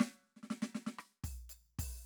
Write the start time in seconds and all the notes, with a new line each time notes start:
0.02 snare
0.36 snare
0.43 snare
0.50 snare
0.62 snare
0.75 snare
0.87 snare
0.99 cross-stick
1.24 kick, percussion
1.50 percussion
1.79 kick, percussion